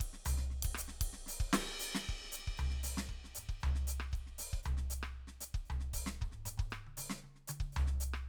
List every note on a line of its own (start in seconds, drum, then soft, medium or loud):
0.01 kick soft
0.01 ride medium
0.14 snare soft
0.26 floor tom loud
0.26 hi-hat pedal medium
0.38 snare soft
0.51 snare soft
0.63 kick medium
0.63 ride loud
0.75 cross-stick medium
0.75 hi-hat pedal loud
0.89 snare soft
1.02 kick medium
1.02 hi-hat pedal soft
1.02 ride loud
1.14 snare soft
1.27 snare soft
1.27 hi-hat pedal medium
1.41 kick medium
1.54 snare loud
1.54 ride loud
1.80 hi-hat pedal loud
1.95 snare medium
2.05 hi-hat pedal soft
2.09 kick soft
2.25 snare soft
2.33 hi-hat pedal loud
2.39 snare soft
2.48 kick soft
2.58 floor tom loud
2.58 hi-hat pedal soft
2.71 snare soft
2.84 snare soft
2.84 hi-hat pedal loud
2.98 snare medium
3.09 kick soft
3.25 snare soft
3.36 hi-hat pedal loud
3.36 mid tom soft
3.50 kick soft
3.61 floor tom loud
3.61 hi-hat pedal soft
3.76 snare soft
3.88 hi-hat pedal loud
3.88 ride soft
4.01 cross-stick medium
4.12 kick soft
4.12 hi-hat pedal soft
4.12 ride soft
4.27 snare soft
4.39 snare soft
4.39 hi-hat pedal loud
4.54 kick soft
4.64 floor tom loud
4.64 hi-hat pedal soft
4.78 snare soft
4.91 hi-hat pedal loud
5.04 cross-stick medium
5.28 snare soft
5.41 snare soft
5.41 hi-hat pedal loud
5.55 kick medium
5.66 hi-hat pedal soft
5.71 floor tom medium
5.81 snare soft
5.94 kick soft
5.94 hi-hat pedal loud
6.07 snare medium
6.22 kick soft
6.22 mid tom medium
6.32 snare soft
6.46 hi-hat pedal loud
6.46 mid tom medium
6.58 kick medium
6.58 mid tom medium
6.71 cross-stick medium
6.71 hi-hat pedal soft
6.87 high tom soft
6.98 hi-hat pedal medium
6.98 high tom soft
7.10 snare medium
7.24 kick soft
7.24 high tom soft
7.36 snare soft
7.48 hi-hat pedal medium
7.48 high tom medium
7.61 kick soft
7.73 hi-hat pedal soft
7.77 floor tom loud
7.87 snare soft
8.01 kick soft
8.01 hi-hat pedal medium
8.14 cross-stick medium